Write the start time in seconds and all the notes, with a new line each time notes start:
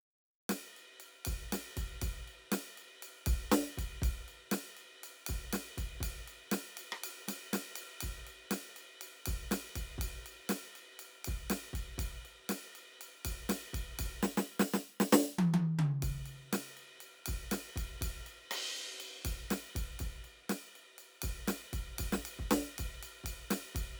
0.49 snare, ride
0.76 ride
1.00 ride
1.25 kick, ride
1.52 snare, ride
1.77 kick, ride
2.01 kick, ride
2.27 ride
2.52 snare, ride
2.77 ride
3.02 ride
3.26 kick, ride
3.51 snare, ride
3.77 kick, ride
4.02 kick, ride
4.28 ride
4.51 snare, ride
4.77 ride
5.03 ride
5.26 kick, ride
5.53 snare, ride
5.77 kick, ride
6.00 kick, ride
6.27 ride
6.51 snare, ride
6.77 ride
6.92 cross-stick
7.03 ride
7.28 snare, ride
7.53 snare, ride
7.75 ride
8.00 kick, ride
8.27 ride
8.51 snare, ride
8.76 ride
9.01 ride
9.26 kick, ride
9.51 snare, ride
9.75 kick, ride
9.98 kick, ride
10.26 ride
10.49 snare, ride
10.75 ride
10.99 ride
11.24 kick, ride
11.50 snare, ride
11.73 kick, ride
11.98 kick, ride
12.25 ride
12.49 snare, ride
12.75 ride
13.01 ride
13.25 kick, ride
13.49 snare, ride
13.73 kick, ride
13.99 kick, ride
14.22 snare
14.37 snare
14.59 snare
14.73 snare
15.00 snare
15.12 snare
15.38 high tom
15.54 high tom
15.79 mid tom
16.02 kick, ride
16.26 ride
16.52 snare, ride
16.77 ride
17.00 ride
17.26 kick, ride
17.51 snare, ride
17.76 kick, ride
18.01 kick, ride
18.26 ride
18.51 cross-stick, ride
18.76 ride
19.00 ride
19.25 kick, ride
19.50 snare, ride
19.75 kick, ride
19.99 kick, ride
20.24 ride
20.49 snare, ride
20.75 ride
20.98 ride
21.22 kick, ride
21.47 snare, ride
21.73 kick, ride
21.98 kick, ride
22.12 snare
22.25 ride
22.39 kick
22.51 snare, ride
22.78 kick, ride
23.02 ride
23.24 kick, ride
23.50 snare, ride
23.75 kick, ride